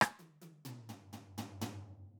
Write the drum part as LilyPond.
\new DrumStaff \drummode { \time 4/4 \tempo 4 = 63 ss16 tommh16 tommh16 toml16 tomfh16 tomfh16 tomfh16 tomfh16 r4 r4 | }